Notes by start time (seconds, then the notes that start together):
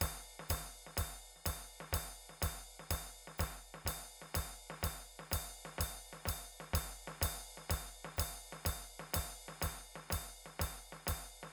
0.01 kick, snare, ride
0.39 snare
0.49 kick, snare, hi-hat pedal, ride
0.57 snare
0.86 snare
0.97 kick, snare, ride
1.36 snare
1.45 kick, snare, hi-hat pedal, ride
1.80 snare
1.92 kick, snare, hi-hat pedal, ride
2.29 snare
2.42 kick, snare, hi-hat pedal, ride
2.79 snare
2.91 kick, snare, ride
3.27 snare
3.38 kick, snare, hi-hat pedal, ride
3.74 snare
3.85 kick, snare, ride
4.22 snare
4.34 kick, snare, hi-hat pedal, ride
4.70 snare
4.81 kick, snare, hi-hat pedal, ride
5.19 snare
5.31 kick, snare, hi-hat pedal, ride
5.65 snare
5.78 kick, snare, ride
6.13 snare
6.25 kick, snare, hi-hat pedal, ride
6.60 snare
6.73 kick, snare, ride
7.07 snare
7.21 kick, snare, hi-hat pedal, ride
7.57 snare
7.70 kick, snare, ride
8.04 snare
8.17 kick, snare, hi-hat pedal, ride
8.52 snare
8.64 kick, snare, hi-hat pedal, ride
8.99 snare
9.14 kick, snare, hi-hat pedal, ride
9.48 snare
9.60 kick, snare, hi-hat pedal, ride
9.96 snare
10.10 kick, snare, hi-hat pedal, ride
10.46 snare
10.59 kick, snare, hi-hat pedal, ride
10.92 snare
11.07 kick, snare, hi-hat pedal, ride
11.43 snare